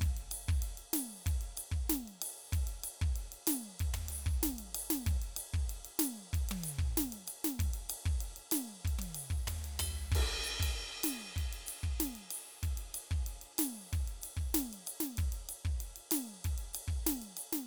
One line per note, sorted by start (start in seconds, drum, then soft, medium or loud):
0.01 kick medium
0.01 ride medium
0.17 ride medium
0.31 hi-hat pedal medium
0.31 ride loud
0.48 kick medium
0.62 ride medium
0.77 ride medium
0.93 snare medium
0.93 hi-hat pedal loud
0.93 ride loud
1.26 kick medium
1.26 ride medium
1.41 ride medium
1.57 hi-hat pedal loud
1.57 ride loud
1.71 kick soft
1.89 snare medium
1.89 ride soft
2.07 ride soft
2.22 hi-hat pedal medium
2.22 ride loud
2.52 kick medium
2.52 ride medium
2.67 ride medium
2.84 hi-hat pedal loud
2.84 ride loud
3.01 kick medium
3.16 ride medium
3.32 ride medium
3.47 snare medium
3.47 hi-hat pedal loud
3.47 ride loud
3.79 kick soft
3.79 ride medium
3.94 floor tom medium
3.94 ride medium
4.08 hi-hat pedal loud
4.08 ride medium
4.26 kick medium
4.43 snare medium
4.43 ride medium
4.58 ride medium
4.74 hi-hat pedal loud
4.74 ride loud
4.90 snare medium
5.06 kick medium
5.06 ride medium
5.22 ride medium
5.36 hi-hat pedal medium
5.36 ride loud
5.54 kick medium
5.69 ride medium
5.85 ride medium
5.99 snare medium
5.99 ride loud
6.03 hi-hat pedal loud
6.33 kick medium
6.33 ride medium
6.49 high tom medium
6.49 ride medium
6.64 hi-hat pedal loud
6.64 ride medium
6.78 kick medium
6.97 snare medium
6.97 ride medium
7.12 ride medium
7.27 hi-hat pedal medium
7.27 ride medium
7.44 snare medium
7.59 kick medium
7.59 ride medium
7.74 ride medium
7.89 hi-hat pedal medium
7.89 ride loud
8.05 kick medium
8.21 ride medium
8.36 ride medium
8.51 snare medium
8.51 hi-hat pedal loud
8.51 ride loud
8.85 kick soft
8.85 ride medium
8.99 high tom medium
8.99 ride medium
9.14 hi-hat pedal medium
9.14 ride medium
9.30 kick soft
9.47 floor tom medium
9.47 ride loud
9.64 ride medium
9.79 floor tom medium
9.79 hi-hat pedal loud
9.79 ride bell loud
10.12 kick medium
10.12 ride loud
10.44 hi-hat pedal medium
10.60 kick soft
10.60 ride loud
11.03 snare medium
11.03 hi-hat pedal medium
11.03 ride loud
11.36 kick soft
11.36 ride medium
11.53 ride medium
11.66 hi-hat pedal medium
11.66 ride medium
11.83 kick soft
11.92 kick soft
12.00 snare medium
12.00 ride medium
12.15 ride medium
12.31 hi-hat pedal loud
12.31 ride loud
12.63 kick soft
12.63 ride medium
12.77 ride medium
12.94 hi-hat pedal loud
12.94 ride loud
13.11 kick medium
13.26 ride medium
13.41 ride medium
13.58 snare medium
13.58 hi-hat pedal loud
13.58 ride loud
13.93 kick soft
13.93 ride medium
14.07 ride medium
14.21 hi-hat pedal medium
14.21 ride medium
14.37 kick soft
14.54 snare medium
14.54 ride loud
14.73 ride medium
14.86 hi-hat pedal loud
14.86 ride medium
15.00 snare medium
15.17 kick medium
15.17 ride medium
15.32 ride medium
15.49 hi-hat pedal medium
15.49 ride medium
15.65 kick soft
15.80 ride medium
15.96 ride medium
16.11 snare medium
16.11 hi-hat pedal loud
16.11 ride loud
16.44 kick soft
16.44 ride medium
16.58 ride medium
16.73 hi-hat pedal medium
16.73 ride loud
16.88 kick soft
17.06 snare medium
17.06 ride loud
17.22 ride medium
17.37 hi-hat pedal loud
17.37 ride medium
17.52 snare medium